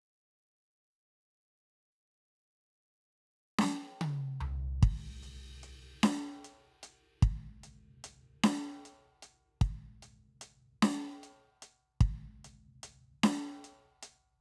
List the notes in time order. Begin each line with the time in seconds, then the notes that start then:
3.59 snare
3.61 snare
4.01 high tom
4.41 floor tom
4.83 kick, ride, crash
5.23 closed hi-hat
5.63 closed hi-hat
6.03 snare, closed hi-hat
6.45 closed hi-hat
6.83 closed hi-hat
7.23 kick, closed hi-hat
7.63 closed hi-hat
8.04 closed hi-hat
8.44 snare, closed hi-hat
8.85 closed hi-hat
9.22 closed hi-hat
9.61 kick, closed hi-hat
10.03 closed hi-hat
10.41 closed hi-hat
10.83 snare, closed hi-hat
11.23 closed hi-hat
11.62 closed hi-hat
12.01 kick, closed hi-hat
12.45 closed hi-hat
12.83 closed hi-hat
13.23 snare, closed hi-hat
13.64 closed hi-hat
14.03 closed hi-hat